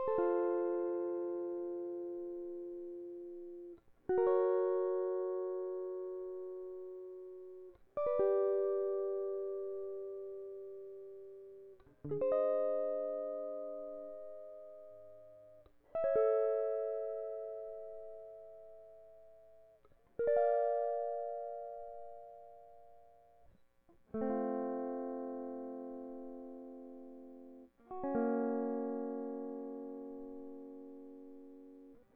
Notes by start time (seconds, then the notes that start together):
0.00 C5
0.08 A4
0.16 F4
4.10 F#4
4.18 A#4
4.27 C#5
7.98 D5
8.07 B4
8.19 G4
12.11 G#4
12.23 C5
12.33 D#5
15.95 E5
16.06 C#5
16.16 A4
20.19 A#4
20.27 D5
20.36 F5
24.14 A3
24.21 C4
24.31 F4
27.91 F#4
28.04 C#4
28.16 A#3